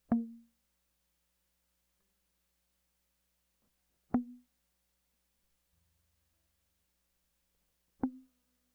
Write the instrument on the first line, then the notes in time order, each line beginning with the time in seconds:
electric guitar
0.12 A#3
4.15 B3
8.04 C4